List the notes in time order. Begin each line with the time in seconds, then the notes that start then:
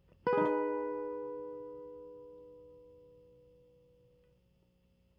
0.10 D#4
0.27 B4
0.34 G#4
0.38 D#4